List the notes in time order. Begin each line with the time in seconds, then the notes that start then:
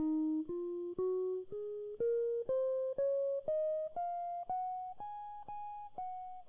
0.00 D#4
0.49 F4
0.99 F#4
1.51 G#4
2.00 A#4
2.49 C5
2.98 C#5
3.48 D#5
3.96 F5
4.50 F#5
5.00 G#5
5.49 G#5
5.98 F#5